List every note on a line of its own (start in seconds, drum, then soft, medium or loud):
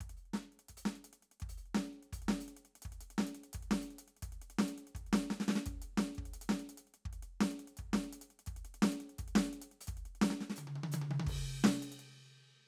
0.00 kick soft
0.00 closed hi-hat soft
0.09 closed hi-hat soft
0.17 closed hi-hat soft
0.25 closed hi-hat soft
0.33 snare medium
0.43 closed hi-hat soft
0.52 closed hi-hat soft
0.59 closed hi-hat soft
0.68 kick soft
0.68 closed hi-hat medium
0.77 closed hi-hat soft
0.85 snare medium
0.95 closed hi-hat soft
1.04 closed hi-hat medium
1.13 closed hi-hat soft
1.22 closed hi-hat soft
1.31 closed hi-hat soft
1.40 kick soft
1.40 closed hi-hat soft
1.49 closed hi-hat soft
1.57 closed hi-hat soft
1.66 closed hi-hat soft
1.74 snare medium
1.83 closed hi-hat soft
1.93 closed hi-hat soft
2.02 closed hi-hat soft
2.12 closed hi-hat medium
2.12 kick soft
2.22 closed hi-hat soft
2.28 snare medium
2.40 closed hi-hat soft
2.48 closed hi-hat soft
2.57 closed hi-hat soft
2.65 closed hi-hat soft
2.75 closed hi-hat soft
2.82 kick soft
2.82 closed hi-hat medium
2.92 closed hi-hat soft
3.01 closed hi-hat medium
3.10 closed hi-hat soft
3.18 snare medium
3.27 closed hi-hat medium
3.35 closed hi-hat soft
3.43 closed hi-hat soft
3.53 kick soft
3.53 closed hi-hat medium
3.62 closed hi-hat soft
3.71 snare medium
3.81 closed hi-hat soft
3.90 closed hi-hat soft
3.98 closed hi-hat medium
4.08 closed hi-hat soft
4.16 closed hi-hat soft
4.22 kick soft
4.22 closed hi-hat medium
4.32 closed hi-hat soft
4.42 closed hi-hat soft
4.50 closed hi-hat soft
4.58 snare medium
4.68 closed hi-hat medium
4.78 closed hi-hat soft
4.87 closed hi-hat soft
4.95 kick soft
4.95 closed hi-hat soft
5.06 closed hi-hat soft
5.13 snare medium
5.23 closed hi-hat soft
5.30 snare medium
5.40 snare medium
5.48 snare medium
5.55 snare medium
5.66 kick soft
5.66 closed hi-hat medium
5.82 closed hi-hat medium
5.97 snare medium
6.15 kick soft
6.15 closed hi-hat soft
6.25 closed hi-hat soft
6.33 closed hi-hat medium
6.41 closed hi-hat medium
6.49 snare medium
6.59 closed hi-hat soft
6.69 closed hi-hat medium
6.77 closed hi-hat medium
6.87 closed hi-hat soft
6.94 closed hi-hat soft
7.05 kick soft
7.13 closed hi-hat soft
7.22 closed hi-hat soft
7.40 snare medium
7.51 closed hi-hat soft
7.59 closed hi-hat soft
7.67 closed hi-hat soft
7.77 kick soft
7.77 closed hi-hat medium
7.93 snare medium
8.04 closed hi-hat soft
8.12 closed hi-hat medium
8.21 closed hi-hat medium
8.30 closed hi-hat soft
8.39 closed hi-hat soft
8.46 kick soft
8.46 closed hi-hat medium
8.56 closed hi-hat soft
8.65 closed hi-hat soft
8.74 closed hi-hat soft
8.82 snare loud
8.92 closed hi-hat medium
9.00 closed hi-hat soft
9.09 closed hi-hat soft
9.18 kick soft
9.18 closed hi-hat medium
9.28 closed hi-hat soft
9.35 snare loud
9.44 closed hi-hat soft
9.53 closed hi-hat soft
9.62 closed hi-hat medium
9.71 closed hi-hat soft
9.81 closed hi-hat medium
9.87 kick soft
9.87 closed hi-hat medium
9.97 closed hi-hat soft
10.05 closed hi-hat soft
10.15 closed hi-hat soft
10.21 snare medium
10.30 snare medium
10.40 snare soft
10.50 snare soft
10.56 hi-hat pedal medium
10.56 high tom medium
10.67 high tom medium
10.75 high tom medium
10.83 high tom medium
10.92 hi-hat pedal medium
10.92 high tom medium
11.01 high tom medium
11.11 high tom medium
11.20 high tom medium
11.26 kick medium
11.26 crash medium
11.64 snare loud
11.73 closed hi-hat soft
11.82 closed hi-hat medium
11.92 closed hi-hat medium
11.99 closed hi-hat soft